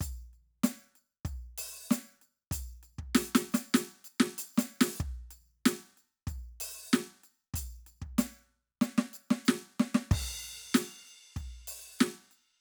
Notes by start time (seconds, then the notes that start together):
0.01 kick, percussion
0.34 percussion
0.64 snare, percussion
0.96 percussion
1.26 kick, percussion
1.58 percussion
1.91 snare, percussion
1.93 percussion
2.22 percussion
2.52 kick, percussion
2.84 percussion
2.99 kick
3.15 snare, percussion
3.26 percussion
3.36 snare, percussion
3.53 snare, percussion
3.55 percussion
3.75 snare, percussion
4.05 percussion
4.21 snare
4.39 percussion
4.55 snare, percussion
4.59 percussion
4.81 snare, percussion
4.99 kick, percussion
5.31 percussion
5.66 snare, percussion
5.98 percussion
6.28 kick, percussion
6.61 percussion
6.94 snare, percussion
7.24 percussion
7.54 kick, percussion
7.87 percussion
8.02 kick
8.19 snare, percussion
8.82 snare, percussion
8.99 snare
9.14 percussion
9.31 snare
9.46 snare, percussion
9.80 snare
9.95 snare
10.12 kick, crash
10.75 snare, percussion
11.08 percussion
11.37 kick, percussion
11.68 percussion
12.00 snare, percussion
12.02 percussion
12.32 percussion